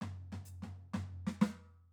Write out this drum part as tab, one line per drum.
HH |---p--------|
SD |o-g-g-o-oo--|
FT |o-o-o-o-----|